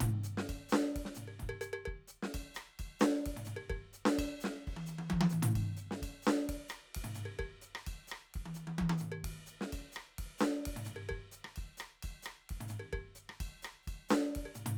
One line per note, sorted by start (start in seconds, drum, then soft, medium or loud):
0.01 kick soft
0.01 mid tom loud
0.22 hi-hat pedal medium
0.22 percussion soft
0.38 snare medium
0.50 kick soft
0.50 ride bell medium
0.69 snare loud
0.69 hi-hat pedal medium
0.96 kick soft
0.96 ride medium
1.04 kick soft
1.04 snare medium
1.15 hi-hat pedal medium
1.15 mid tom medium
1.28 percussion medium
1.40 kick soft
1.40 mid tom medium
1.50 percussion loud
1.62 hi-hat pedal medium
1.62 percussion loud
1.74 percussion loud
1.86 kick soft
1.86 percussion loud
2.08 hi-hat pedal medium
2.23 snare medium
2.35 kick soft
2.35 ride bell medium
2.55 cross-stick medium
2.55 hi-hat pedal medium
2.80 kick soft
2.80 ride bell medium
3.00 snare loud
3.00 hi-hat pedal medium
3.26 kick soft
3.26 ride medium
3.33 kick soft
3.37 mid tom medium
3.45 hi-hat pedal medium
3.45 mid tom medium
3.57 percussion loud
3.70 kick soft
3.70 percussion loud
3.77 kick soft
3.94 hi-hat pedal medium
4.06 snare loud
4.19 kick soft
4.19 ride bell loud
4.41 snare medium
4.41 hi-hat pedal medium
4.68 kick soft
4.68 ride soft
4.73 kick soft
4.73 high tom medium
4.87 hi-hat pedal medium
4.87 high tom soft
4.99 high tom medium
5.10 kick soft
5.10 high tom loud
5.21 high tom loud
5.30 hi-hat pedal medium
5.30 mid tom medium
5.43 mid tom loud
5.56 kick soft
5.56 ride bell medium
5.77 hi-hat pedal medium
5.91 snare medium
6.03 kick soft
6.03 ride bell medium
6.08 kick soft
6.23 hi-hat pedal medium
6.27 snare loud
6.49 kick soft
6.49 ride medium
6.56 kick soft
6.69 cross-stick medium
6.69 hi-hat pedal medium
6.95 kick soft
6.95 ride loud
7.05 mid tom medium
7.15 hi-hat pedal medium
7.15 mid tom medium
7.26 percussion medium
7.39 kick soft
7.39 percussion loud
7.46 kick soft
7.62 hi-hat pedal medium
7.76 cross-stick medium
7.87 kick soft
7.87 ride bell medium
8.08 hi-hat pedal medium
8.12 cross-stick medium
8.35 kick soft
8.35 ride medium
8.42 kick soft
8.46 high tom medium
8.55 hi-hat pedal medium
8.55 high tom soft
8.68 high tom medium
8.79 kick soft
8.79 high tom loud
8.90 high tom loud
8.98 hi-hat pedal medium
8.98 mid tom medium
9.12 percussion loud
9.24 kick soft
9.24 ride medium
9.47 hi-hat pedal medium
9.61 snare medium
9.73 kick soft
9.73 ride bell medium
9.93 cross-stick medium
9.93 hi-hat pedal medium
10.19 kick soft
10.19 ride medium
10.39 snare medium
10.39 hi-hat pedal medium
10.66 kick soft
10.66 ride loud
10.77 mid tom medium
10.85 hi-hat pedal medium
10.97 percussion medium
11.09 kick soft
11.09 percussion loud
11.21 mid tom soft
11.32 hi-hat pedal medium
11.45 cross-stick medium
11.56 kick soft
11.56 ride bell medium
11.64 kick soft
11.78 cross-stick medium
11.78 hi-hat pedal medium
12.03 kick soft
12.03 ride bell medium
12.23 cross-stick medium
12.23 hi-hat pedal medium
12.50 kick soft
12.50 ride medium
12.61 mid tom medium
12.69 hi-hat pedal medium
12.69 mid tom medium
12.80 percussion medium
12.93 kick soft
12.93 percussion loud
12.99 kick soft
13.16 hi-hat pedal medium
13.30 cross-stick medium
13.41 kick soft
13.41 ride bell medium
13.63 cross-stick medium
13.63 hi-hat pedal medium
13.83 hi-hat pedal soft
13.88 kick soft
13.88 ride bell medium
14.09 snare loud
14.09 hi-hat pedal medium
14.36 kick soft
14.36 ride medium
14.46 percussion medium
14.55 hi-hat pedal medium
14.55 mid tom medium
14.66 mid tom loud